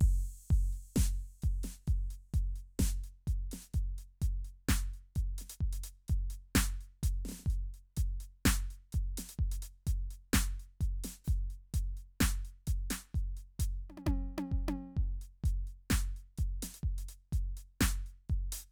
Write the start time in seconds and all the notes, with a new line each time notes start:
0.01 kick, crash
0.51 kick, closed hi-hat
0.73 closed hi-hat
0.96 kick, snare, closed hi-hat
1.43 kick, closed hi-hat
1.64 snare, closed hi-hat
1.88 kick, closed hi-hat
2.11 closed hi-hat
2.34 kick, closed hi-hat
2.56 closed hi-hat
2.79 kick, snare, closed hi-hat
3.04 closed hi-hat
3.28 kick, closed hi-hat
3.52 snare, closed hi-hat
3.62 closed hi-hat
3.74 kick, closed hi-hat
3.98 closed hi-hat
4.22 kick, closed hi-hat
4.45 closed hi-hat
4.69 kick, snare, closed hi-hat
4.94 closed hi-hat
5.16 kick, closed hi-hat
5.38 snare, closed hi-hat
5.50 closed hi-hat
5.61 kick
5.73 closed hi-hat
5.84 closed hi-hat
6.09 kick, closed hi-hat
6.30 closed hi-hat
6.55 closed hi-hat, kick, snare
6.81 closed hi-hat
7.03 closed hi-hat, kick
7.25 snare
7.29 snare, closed hi-hat
7.32 snare
7.40 snare
7.43 kick, snare
7.50 closed hi-hat
7.74 closed hi-hat
7.97 closed hi-hat, kick
8.21 closed hi-hat
8.46 kick, snare, closed hi-hat
8.71 closed hi-hat
8.93 kick, closed hi-hat
9.18 snare, closed hi-hat
9.29 closed hi-hat
9.39 kick
9.52 closed hi-hat
9.62 closed hi-hat
9.87 kick, closed hi-hat
10.11 closed hi-hat
10.34 closed hi-hat, kick, snare
10.60 closed hi-hat
10.81 kick, closed hi-hat
11.04 snare, open hi-hat
11.25 kick, snare, hi-hat pedal
11.29 closed hi-hat
11.50 closed hi-hat
11.74 kick, closed hi-hat
11.97 closed hi-hat
12.21 kick, snare, closed hi-hat
12.45 closed hi-hat
12.67 kick, closed hi-hat
12.91 closed hi-hat, snare
13.15 kick, closed hi-hat
13.37 closed hi-hat
13.60 closed hi-hat, kick
13.90 high tom
13.98 high tom
14.07 kick, high tom
14.38 high tom
14.52 kick
14.69 high tom
14.97 kick
15.22 closed hi-hat
15.44 kick, closed hi-hat
15.67 closed hi-hat
15.90 kick, snare, closed hi-hat
16.17 closed hi-hat
16.38 kick, closed hi-hat
16.63 snare, closed hi-hat
16.74 closed hi-hat
16.84 kick
16.98 closed hi-hat
17.09 closed hi-hat
17.33 kick, closed hi-hat
17.57 closed hi-hat
17.81 kick, snare, closed hi-hat
18.06 closed hi-hat
18.29 kick, closed hi-hat
18.53 open hi-hat